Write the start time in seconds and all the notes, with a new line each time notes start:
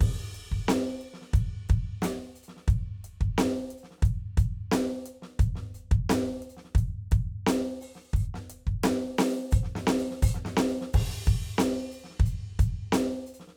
0.01 kick, crash
0.35 closed hi-hat
0.52 kick, snare
0.69 closed hi-hat, snare
1.02 closed hi-hat
1.09 closed hi-hat
1.14 snare
1.22 snare
1.32 kick, snare
1.36 closed hi-hat
1.69 kick, closed hi-hat
2.02 closed hi-hat, snare
2.36 closed hi-hat
2.43 closed hi-hat
2.48 snare
2.57 snare
2.68 kick, closed hi-hat
3.05 closed hi-hat
3.21 kick
3.38 snare, closed hi-hat
3.71 closed hi-hat
3.78 closed hi-hat
3.84 snare, closed hi-hat
3.91 snare
3.99 snare
4.03 kick, closed hi-hat
4.38 closed hi-hat, kick
4.72 closed hi-hat, snare
4.83 snare
5.06 closed hi-hat
5.23 snare
5.40 closed hi-hat, kick
5.56 snare
5.75 closed hi-hat
5.92 kick
6.10 closed hi-hat, snare
6.42 closed hi-hat
6.50 closed hi-hat
6.57 snare
6.65 snare
6.75 kick, snare, closed hi-hat
7.12 kick, snare, closed hi-hat
7.47 closed hi-hat, snare
7.81 open hi-hat
7.96 snare
8.14 kick, open hi-hat
8.25 hi-hat pedal
8.35 snare
8.50 closed hi-hat
8.67 kick
8.84 snare, closed hi-hat
9.18 open hi-hat, snare
9.52 open hi-hat, kick, hi-hat pedal
9.64 snare
9.76 snare
9.87 snare
9.99 open hi-hat
10.11 snare
10.23 open hi-hat, kick
10.30 hi-hat pedal
10.35 snare
10.45 snare
10.57 snare
10.69 open hi-hat
10.81 snare
10.94 kick, crash
11.09 snare
11.26 closed hi-hat, kick
11.59 closed hi-hat, snare
11.92 closed hi-hat
11.99 closed hi-hat
12.04 snare
12.10 snare
12.15 snare
12.20 kick, snare
12.26 closed hi-hat, snare
12.60 closed hi-hat, kick
12.93 closed hi-hat, snare
13.27 closed hi-hat
13.34 closed hi-hat
13.40 snare
13.48 snare